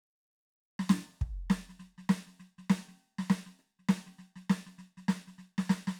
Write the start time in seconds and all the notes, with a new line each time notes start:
0.80 snare
0.90 snare
1.22 kick
1.46 kick
1.50 snare
1.69 snare
1.80 snare
1.98 snare
2.10 snare
2.27 snare
2.40 snare
2.59 snare
2.70 snare
2.89 snare
3.19 snare
3.30 snare
3.46 snare
3.59 cross-stick
3.79 snare
3.89 snare
4.07 snare
4.19 snare
4.36 snare
4.50 snare
4.67 snare
4.79 snare
4.98 snare
5.09 snare
5.28 snare
5.39 snare
5.58 snare
5.70 snare
5.88 snare